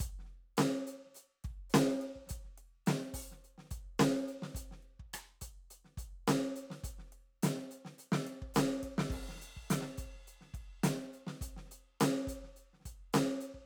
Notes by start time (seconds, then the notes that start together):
0.00 closed hi-hat, kick
0.05 kick
0.09 kick
0.19 snare
0.24 snare
0.57 closed hi-hat, snare
0.87 closed hi-hat
1.05 snare
1.14 closed hi-hat, hi-hat pedal
1.44 kick, closed hi-hat
1.50 kick
1.69 hi-hat pedal
1.74 closed hi-hat, snare
2.01 closed hi-hat
2.15 kick
2.26 closed hi-hat, snare
2.30 kick
2.44 snare
2.57 closed hi-hat
2.86 closed hi-hat, snare
3.13 open hi-hat, kick
3.31 snare
3.44 closed hi-hat
3.58 snare
3.64 snare
3.70 closed hi-hat, kick
3.98 closed hi-hat, snare, hi-hat pedal
4.15 snare
4.28 closed hi-hat
4.42 snare
4.54 closed hi-hat, kick
4.71 snare
4.79 snare, closed hi-hat
4.99 kick
5.13 closed hi-hat, cross-stick
5.41 closed hi-hat, kick
5.70 closed hi-hat
5.84 snare
5.97 closed hi-hat, kick
6.27 closed hi-hat, snare
6.56 closed hi-hat
6.70 snare
6.83 closed hi-hat, kick
6.98 snare
7.05 snare
7.12 closed hi-hat
7.42 closed hi-hat, snare
7.57 snare
7.71 closed hi-hat
7.85 snare
7.98 closed hi-hat, hi-hat pedal
8.12 snare
8.27 closed hi-hat
8.42 kick
8.54 closed hi-hat, snare, hi-hat pedal
8.69 snare
8.83 kick, closed hi-hat
8.98 snare
9.10 kick, crash
9.16 kick
9.19 kick
9.28 snare
9.35 snare
9.41 closed hi-hat
9.56 kick
9.70 closed hi-hat, snare
9.81 snare
9.97 closed hi-hat, kick
10.05 kick
10.14 snare
10.27 closed hi-hat
10.41 snare
10.46 snare
10.53 kick, closed hi-hat
10.83 closed hi-hat, snare
11.13 closed hi-hat
11.27 snare
11.41 closed hi-hat, kick
11.56 snare
11.65 snare
11.71 closed hi-hat
12.00 closed hi-hat, snare
12.27 closed hi-hat, kick
12.43 snare
12.56 closed hi-hat
12.73 snare
12.80 snare
12.85 closed hi-hat, kick
13.13 closed hi-hat, snare, hi-hat pedal
13.27 snare
13.40 closed hi-hat
13.54 kick